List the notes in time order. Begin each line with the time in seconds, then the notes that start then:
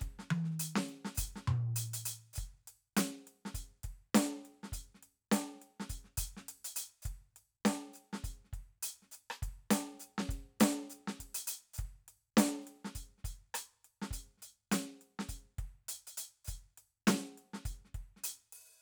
0.01 kick, closed hi-hat
0.07 kick
0.19 snare
0.30 high tom
0.44 snare
0.50 snare
0.59 closed hi-hat
0.75 snare
0.88 closed hi-hat
1.05 snare
1.15 closed hi-hat, kick, hi-hat pedal
1.24 kick
1.27 kick
1.36 snare
1.47 mid tom
1.76 closed hi-hat
1.93 closed hi-hat
2.05 closed hi-hat
2.33 closed hi-hat, hi-hat pedal
2.38 kick
2.67 closed hi-hat
2.97 closed hi-hat, snare
3.27 closed hi-hat
3.45 snare
3.54 closed hi-hat, kick
3.83 kick, closed hi-hat
4.14 closed hi-hat, snare
4.45 closed hi-hat
4.63 snare
4.72 closed hi-hat, kick
4.94 snare
5.01 snare, closed hi-hat
5.31 closed hi-hat, snare
5.62 closed hi-hat
5.80 snare
5.89 closed hi-hat, kick
6.04 snare
6.17 closed hi-hat, kick
6.26 kick
6.37 snare
6.48 closed hi-hat
6.64 closed hi-hat
6.76 closed hi-hat
7.02 kick, closed hi-hat, hi-hat pedal
7.36 closed hi-hat
7.65 closed hi-hat, snare
7.93 closed hi-hat, hi-hat pedal
8.13 snare
8.24 closed hi-hat, kick
8.44 snare
8.50 kick, snare, closed hi-hat
8.82 closed hi-hat
9.02 snare
9.11 closed hi-hat, hi-hat pedal
9.30 cross-stick
9.42 kick, closed hi-hat
9.48 kick
9.51 kick
9.70 closed hi-hat, snare
10.00 closed hi-hat, hi-hat pedal
10.18 snare
10.29 kick, closed hi-hat
10.35 kick
10.38 kick
10.60 closed hi-hat, snare
10.90 hi-hat pedal
11.07 snare
11.19 kick, closed hi-hat
11.34 closed hi-hat
11.47 closed hi-hat
11.73 hi-hat pedal
11.78 kick, closed hi-hat
11.85 kick
12.08 closed hi-hat
12.37 closed hi-hat, snare
12.46 snare
12.61 hi-hat pedal
12.67 closed hi-hat
12.84 snare
12.95 closed hi-hat, kick
13.18 snare
13.24 closed hi-hat, kick
13.54 closed hi-hat, cross-stick
13.84 closed hi-hat
14.02 snare
14.11 closed hi-hat, kick
14.37 snare
14.42 closed hi-hat
14.71 closed hi-hat, snare
15.01 closed hi-hat
15.19 snare
15.29 closed hi-hat, kick
15.58 kick, closed hi-hat
15.88 closed hi-hat
16.07 closed hi-hat
16.17 closed hi-hat
16.44 closed hi-hat, kick, hi-hat pedal
16.77 closed hi-hat
17.07 closed hi-hat, snare
17.37 closed hi-hat
17.53 snare
17.65 closed hi-hat, kick
17.85 snare
17.94 kick, closed hi-hat
18.16 snare
18.21 closed hi-hat, snare
18.52 open hi-hat